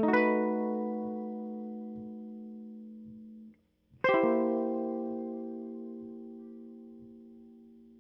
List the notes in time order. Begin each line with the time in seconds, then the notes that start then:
0.00 A3 D#4
0.09 F#4
0.14 B4
4.05 C5
4.09 G4
4.14 E4
4.24 A#3